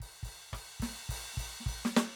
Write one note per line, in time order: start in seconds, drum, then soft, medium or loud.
0.00 kick soft
0.00 crash medium
0.23 kick soft
0.23 crash medium
0.53 kick soft
0.53 cross-stick medium
0.53 crash medium
0.80 kick soft
0.80 snare medium
0.80 crash medium
1.09 kick soft
1.09 crash medium
1.33 kick soft
1.33 snare soft
1.39 crash medium
1.60 snare soft
1.66 kick medium
1.66 crash medium
1.85 snare medium
1.96 snare loud